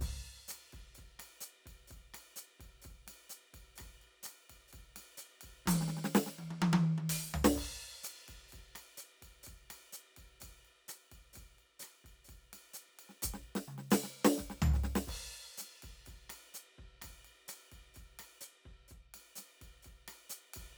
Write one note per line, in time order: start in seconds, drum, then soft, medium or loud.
0.01 kick soft
0.01 hi-hat pedal medium
0.01 crash medium
0.08 kick soft
0.48 cross-stick soft
0.48 hi-hat pedal medium
0.48 ride medium
0.73 kick soft
0.73 ride soft
0.79 kick soft
0.95 kick soft
0.95 hi-hat pedal soft
0.95 ride soft
1.03 kick soft
1.19 cross-stick soft
1.19 ride medium
1.41 hi-hat pedal medium
1.41 ride soft
1.66 kick soft
1.66 ride soft
1.71 kick soft
1.87 kick soft
1.87 hi-hat pedal soft
1.87 ride soft
1.96 kick soft
2.14 cross-stick soft
2.14 snare soft
2.14 ride medium
2.36 hi-hat pedal medium
2.36 ride soft
2.60 kick soft
2.60 ride soft
2.65 kick soft
2.82 kick soft
2.82 hi-hat pedal soft
2.82 ride soft
2.90 kick soft
3.07 snare soft
3.07 ride medium
3.30 hi-hat pedal medium
3.30 ride soft
3.54 kick soft
3.54 ride soft
3.76 cross-stick soft
3.76 snare soft
3.76 hi-hat pedal soft
3.76 ride medium
3.80 kick soft
3.85 kick soft
4.02 ride soft
4.23 cross-stick soft
4.23 snare soft
4.23 hi-hat pedal medium
4.23 ride medium
4.50 kick soft
4.50 ride soft
4.68 hi-hat pedal soft
4.73 kick soft
4.73 ride soft
4.79 kick soft
4.96 snare soft
4.96 ride medium
5.18 hi-hat pedal medium
5.18 ride soft
5.41 kick soft
5.41 ride medium
5.66 kick soft
5.66 hi-hat pedal loud
5.66 high tom loud
5.74 snare soft
5.81 snare soft
5.88 snare soft
5.97 snare soft
6.04 snare medium
6.15 snare loud
6.26 snare soft
6.39 kick soft
6.39 high tom medium
6.51 high tom medium
6.62 kick soft
6.62 high tom loud
6.73 high tom loud
6.84 high tom soft
6.98 high tom medium
7.09 kick soft
7.09 closed hi-hat loud
7.34 kick soft
7.34 floor tom medium
7.39 kick soft
7.45 snare loud
7.56 kick soft
7.56 crash medium
7.62 kick soft
8.04 hi-hat pedal medium
8.04 ride medium
8.28 kick soft
8.28 ride medium
8.48 hi-hat pedal soft
8.52 kick soft
8.52 ride soft
8.58 kick soft
8.75 cross-stick soft
8.75 snare soft
8.75 ride medium
8.97 hi-hat pedal medium
8.97 ride soft
9.22 kick soft
9.22 ride soft
9.43 kick soft
9.43 hi-hat pedal medium
9.43 ride soft
9.52 kick soft
9.70 cross-stick soft
9.70 ride medium
9.93 hi-hat pedal medium
9.93 ride soft
10.17 kick soft
10.17 ride soft
10.40 kick soft
10.40 snare soft
10.40 hi-hat pedal soft
10.40 ride medium
10.47 kick soft
10.65 ride soft
10.88 cross-stick soft
10.88 snare soft
10.88 hi-hat pedal medium
10.88 ride medium
11.12 kick soft
11.12 ride soft
11.33 kick soft
11.33 snare soft
11.33 hi-hat pedal soft
11.33 ride soft
11.41 kick soft
11.59 ride soft
11.80 cross-stick soft
11.80 snare soft
11.80 closed hi-hat soft
11.80 hi-hat pedal medium
11.80 ride medium
12.04 kick soft
12.04 ride soft
12.25 hi-hat pedal soft
12.29 kick soft
12.29 ride soft
12.34 kick soft
12.53 snare soft
12.53 ride medium
12.74 hi-hat pedal medium
12.74 ride soft
12.89 cross-stick soft
12.99 ride medium
13.09 snare soft
13.22 kick soft
13.22 hi-hat pedal loud
13.22 ride medium
13.30 kick soft
13.30 snare soft
13.55 snare medium
13.68 mid tom soft
13.78 snare soft
13.91 snare loud
13.91 hi-hat pedal loud
14.04 snare soft
14.25 snare loud
14.38 kick soft
14.38 snare soft
14.45 kick soft
14.50 snare soft
14.62 floor tom loud
14.74 snare soft
14.84 snare medium
14.96 snare loud
15.07 kick soft
15.07 crash medium
15.58 snare soft
15.58 hi-hat pedal medium
15.58 ride medium
15.82 kick soft
15.82 ride medium
15.89 kick soft
16.05 kick soft
16.05 hi-hat pedal soft
16.05 ride soft
16.13 kick soft
16.29 cross-stick soft
16.29 snare soft
16.29 ride medium
16.54 hi-hat pedal medium
16.78 kick soft
16.83 kick soft
17.01 kick soft
17.01 cross-stick soft
17.01 snare soft
17.01 hi-hat pedal soft
17.01 ride medium
17.09 kick soft
17.25 ride soft
17.48 cross-stick soft
17.48 hi-hat pedal medium
17.48 ride medium
17.72 kick soft
17.72 ride soft
17.94 kick soft
17.94 hi-hat pedal soft
17.94 ride soft
18.01 kick soft
18.19 cross-stick soft
18.19 ride medium
18.41 hi-hat pedal medium
18.65 kick soft
18.65 ride soft
18.70 kick soft
18.88 kick soft
18.88 hi-hat pedal soft
19.14 snare soft
19.14 ride medium
19.36 snare soft
19.36 hi-hat pedal medium
19.36 ride medium
19.61 kick soft
19.61 ride soft
19.83 kick soft
19.83 hi-hat pedal soft
19.83 ride soft
20.08 cross-stick soft
20.08 snare soft
20.08 ride medium
20.30 hi-hat pedal medium
20.30 ride medium
20.54 kick soft
20.54 ride medium